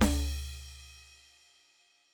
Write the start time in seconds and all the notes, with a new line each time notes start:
0.01 kick, snare, hi-hat pedal, crash
0.08 kick, cross-stick